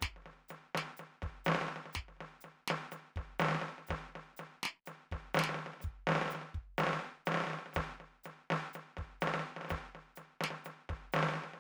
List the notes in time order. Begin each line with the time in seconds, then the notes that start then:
0.01 kick, snare, hi-hat pedal
0.03 snare
0.16 snare
0.22 snare
0.26 snare
0.33 snare
0.38 snare
0.49 snare, hi-hat pedal
0.75 snare
0.78 snare
0.97 snare, hi-hat pedal
1.22 kick, snare
1.45 snare, hi-hat pedal
1.48 snare
1.52 snare
1.55 snare
1.61 snare
1.67 snare
1.69 snare
1.76 snare
1.86 snare
1.93 kick, snare, hi-hat pedal
2.09 snare
2.17 snare
2.21 snare
2.32 snare
2.41 snare, hi-hat pedal
2.68 snare
2.70 snare
2.92 snare, hi-hat pedal
3.04 snare
3.08 snare
3.16 kick, snare
3.39 snare, hi-hat pedal
3.42 snare
3.45 snare
3.49 snare
3.51 snare
3.55 snare
3.60 snare
3.62 snare
3.69 snare
3.78 snare
3.87 kick, snare, hi-hat pedal
3.91 snare
3.99 snare
4.09 snare
4.16 snare
4.33 snare, hi-hat pedal
4.40 snare
4.63 snare
4.66 snare
4.86 snare, hi-hat pedal
4.96 snare
5.02 snare
5.12 kick, snare
5.34 snare, hi-hat pedal
5.37 snare
5.39 snare
5.44 snare
5.49 snare
5.55 snare
5.59 snare
5.66 snare
5.74 snare
5.80 snare, hi-hat pedal
5.84 kick
6.07 snare
6.09 snare
6.12 snare
6.16 snare
6.18 snare
6.22 snare
6.26 snare
6.28 snare, hi-hat pedal
6.33 snare
6.35 snare
6.42 snare
6.48 snare
6.53 kick, snare
6.78 snare, hi-hat pedal
6.80 snare
6.84 snare
6.87 snare
6.89 snare
6.93 snare
6.99 snare
7.05 snare
7.26 snare, hi-hat pedal
7.32 snare
7.35 snare
7.38 snare
7.41 snare
7.44 snare
7.47 snare
7.50 snare
7.54 snare
7.59 snare
7.66 snare
7.73 kick, snare, hi-hat pedal
7.77 snare
7.89 snare
7.95 snare
7.99 snare
8.00 snare
8.24 snare, hi-hat pedal
8.51 snare
8.52 snare
8.73 snare, hi-hat pedal
8.97 kick, snare
9.21 snare, hi-hat pedal
9.28 snare
9.34 snare
9.40 snare
9.47 snare
9.53 snare
9.56 snare
9.61 snare
9.65 snare
9.68 snare, hi-hat pedal
9.71 kick, snare
9.78 snare
9.83 snare
9.86 snare
9.91 snare
9.95 snare
10.16 snare, hi-hat pedal
10.41 snare
10.44 snare
10.51 snare
10.65 snare, hi-hat pedal
10.89 kick, snare
11.13 snare, hi-hat pedal
11.17 snare
11.19 snare
11.23 snare
11.29 snare
11.34 snare
11.36 snare
11.43 snare
11.54 snare